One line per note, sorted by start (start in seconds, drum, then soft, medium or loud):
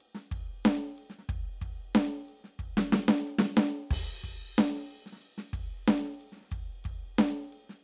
0.01 ride medium
0.15 snare soft
0.32 kick medium
0.32 ride medium
0.65 snare loud
0.65 ride medium
0.98 ride medium
1.10 snare soft
1.19 snare soft
1.29 kick medium
1.29 ride medium
1.62 kick medium
1.62 ride medium
1.95 snare loud
1.95 ride medium
2.29 ride medium
2.44 snare soft
2.59 kick medium
2.59 ride medium
2.77 snare loud
2.93 snare loud
2.93 hi-hat pedal medium
3.09 snare loud
3.27 hi-hat pedal medium
3.39 snare loud
3.57 snare loud
3.57 hi-hat pedal medium
3.64 snare soft
3.85 snare soft
3.91 kick loud
3.91 crash loud
4.24 kick medium
4.24 ride soft
4.58 snare loud
4.58 ride loud
4.76 snare soft
4.91 ride medium
5.06 snare soft
5.13 snare soft
5.17 snare soft
5.22 ride medium
5.38 snare medium
5.53 kick medium
5.53 ride medium
5.88 snare loud
5.88 ride medium
6.04 snare soft
6.12 snare soft
6.21 ride medium
6.32 snare soft
6.37 snare soft
6.41 snare soft
6.45 snare soft
6.49 kick medium
6.49 snare soft
6.49 ride medium
6.53 snare soft
6.85 kick medium
6.85 ride medium
7.19 snare loud
7.19 ride medium
7.53 ride medium
7.70 snare soft